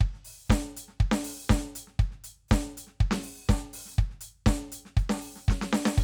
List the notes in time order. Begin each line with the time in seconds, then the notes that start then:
0.01 kick, closed hi-hat
0.14 snare
0.25 open hi-hat
0.47 kick, hi-hat pedal
0.51 closed hi-hat, snare
0.67 snare
0.77 closed hi-hat
0.88 snare
1.00 kick, closed hi-hat
1.12 snare
1.24 open hi-hat
1.47 kick, snare, hi-hat pedal
1.53 closed hi-hat
1.57 snare
1.66 snare
1.68 snare
1.76 closed hi-hat
1.88 snare
1.92 snare
2.00 closed hi-hat, kick
2.11 snare
2.24 open hi-hat
2.49 kick, snare, hi-hat pedal
2.53 closed hi-hat
2.78 closed hi-hat
2.87 snare
3.00 kick, closed hi-hat
3.11 snare
3.18 snare
3.23 open hi-hat
3.46 kick, snare, closed hi-hat, hi-hat pedal
3.57 snare
3.68 snare
3.74 open hi-hat
3.86 snare
3.89 snare
3.91 snare, hi-hat pedal
3.98 kick, closed hi-hat
4.10 snare
4.14 snare
4.21 closed hi-hat
4.46 kick, snare, closed hi-hat
4.72 closed hi-hat
4.86 snare
4.97 closed hi-hat, kick
5.10 snare
5.17 snare
5.22 open hi-hat
5.36 snare
5.44 hi-hat pedal
5.48 kick, snare
5.62 snare
5.73 snare
5.86 snare
5.98 kick, crash